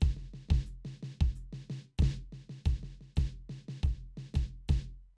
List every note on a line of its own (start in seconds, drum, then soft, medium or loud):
0.01 kick medium
0.01 snare medium
0.01 hi-hat pedal medium
0.17 snare soft
0.34 snare soft
0.49 kick medium
0.49 snare soft
0.52 snare medium
0.66 hi-hat pedal medium
0.85 snare soft
1.03 snare soft
1.21 kick medium
1.21 snare soft
1.36 hi-hat pedal medium
1.53 snare soft
1.70 snare medium
1.98 kick medium
1.98 snare soft
1.98 hi-hat pedal medium
2.03 snare medium
2.33 snare soft
2.50 snare soft
2.65 kick medium
2.65 snare soft
2.65 hi-hat pedal medium
2.83 snare soft
3.01 snare soft
3.16 kick medium
3.16 snare medium
3.16 hi-hat pedal medium
3.50 snare soft
3.69 snare soft
3.83 kick medium
3.83 snare soft
3.83 hi-hat pedal soft
4.18 snare soft
4.34 kick medium
4.34 snare medium
4.34 hi-hat pedal medium
4.68 kick medium
4.68 snare medium
4.68 hi-hat pedal medium